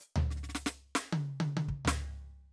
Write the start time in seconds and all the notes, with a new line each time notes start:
0.00 hi-hat pedal
0.16 floor tom
0.31 snare
0.36 snare
0.43 snare
0.49 snare
0.55 snare
0.66 snare
0.95 snare
1.12 high tom
1.40 high tom
1.57 high tom
1.68 kick
1.85 snare, floor tom